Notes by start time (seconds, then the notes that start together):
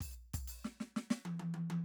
0.01 kick, percussion
0.11 percussion
0.34 kick, percussion
0.48 percussion
0.65 snare
0.80 snare
0.96 snare
1.11 snare
1.25 high tom
1.40 high tom
1.54 high tom
1.70 high tom